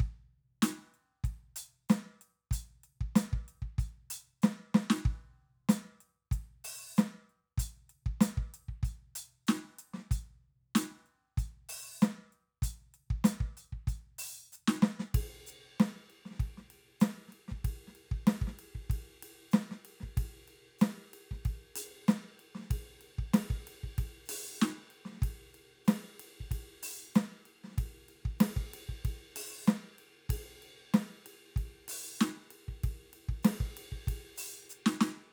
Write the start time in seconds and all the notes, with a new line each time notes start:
0.01 kick
0.63 closed hi-hat, snare
0.95 closed hi-hat
1.25 kick, closed hi-hat
1.57 open hi-hat
1.90 closed hi-hat, snare, hi-hat pedal
2.22 closed hi-hat
2.52 closed hi-hat, kick
2.85 closed hi-hat
3.02 kick
3.17 closed hi-hat, snare
3.34 kick
3.49 closed hi-hat
3.63 kick
3.79 closed hi-hat, kick
4.11 open hi-hat
4.43 snare, hi-hat pedal
4.76 snare
4.91 snare
5.06 kick
5.70 closed hi-hat, snare
6.02 closed hi-hat
6.32 kick, closed hi-hat
6.65 open hi-hat
6.98 snare, closed hi-hat, hi-hat pedal
7.31 closed hi-hat
7.59 closed hi-hat, kick
7.91 closed hi-hat
8.07 kick
8.22 closed hi-hat, snare
8.38 kick
8.55 closed hi-hat
8.69 kick
8.84 closed hi-hat, kick
9.16 open hi-hat
9.48 closed hi-hat, snare, hi-hat pedal
9.80 closed hi-hat
9.95 snare
9.99 snare
10.07 snare
10.11 closed hi-hat, kick, snare
10.76 closed hi-hat, snare
11.07 closed hi-hat
11.39 closed hi-hat, kick
11.70 open hi-hat
12.03 snare, hi-hat pedal
12.33 closed hi-hat
12.63 closed hi-hat, kick
12.95 closed hi-hat
13.11 kick
13.25 closed hi-hat, snare
13.41 kick
13.58 closed hi-hat
13.74 kick
13.88 closed hi-hat, kick
14.19 open hi-hat
14.53 hi-hat pedal, open hi-hat
14.69 snare
14.83 snare
15.01 snare
15.15 kick, ride
15.48 hi-hat pedal, ride
15.81 snare, ride
16.11 ride
16.26 snare
16.32 snare
16.35 snare
16.38 kick, snare, ride
16.59 snare
16.71 ride
17.01 snare, hi-hat pedal, ride
17.29 snare
17.33 ride
17.49 kick, snare
17.66 kick, ride
17.89 snare
17.96 ride
18.12 kick
18.28 snare, ride
18.43 kick
18.48 snare
18.60 ride
18.76 kick
18.91 kick, ride
19.24 ride
19.53 snare, hi-hat pedal, ride
19.72 snare
19.86 ride
20.01 kick, snare
20.18 kick, ride
20.49 ride
20.80 snare, hi-hat pedal, ride
21.14 ride
21.32 kick, snare
21.46 kick, ride
21.77 open hi-hat, ride
22.09 snare, hi-hat pedal, ride
22.40 ride
22.56 snare
22.60 snare
22.63 snare
22.65 snare
22.69 kick, snare, ride
23.02 ride
23.19 kick
23.35 snare, ride
23.51 kick
23.68 ride
23.84 kick
23.99 kick, ride
24.27 open hi-hat, hi-hat pedal, ride
24.62 snare, hi-hat pedal, ride
24.91 ride
25.06 snare
25.10 snare
25.13 snare
25.15 snare
25.17 snare
25.21 kick, snare, ride
25.56 ride
25.86 snare, hi-hat pedal, ride
26.21 ride
26.41 kick
26.52 kick, ride
26.84 open hi-hat, ride
27.16 snare, hi-hat pedal, ride
27.47 ride
27.65 snare
27.69 snare
27.71 snare
27.76 kick, snare, ride
28.10 ride
28.26 kick
28.39 snare, hi-hat pedal, ride
28.58 kick
28.75 ride
28.90 kick
29.06 kick, ride
29.37 open hi-hat, ride
29.68 snare, hi-hat pedal, ride
29.99 ride
30.30 kick, ride
30.63 ride
30.95 snare, ride
31.27 ride
31.57 kick, ride
31.89 open hi-hat, ride
32.21 snare, hi-hat pedal, ride
32.52 ride
32.69 kick
32.85 kick, ride
33.14 ride
33.30 kick
33.44 snare, hi-hat pedal, ride
33.61 kick
33.78 ride
33.93 kick
34.05 kick, hi-hat pedal
34.10 ride
34.37 open hi-hat, hi-hat pedal
34.71 hi-hat pedal
34.87 snare
35.02 snare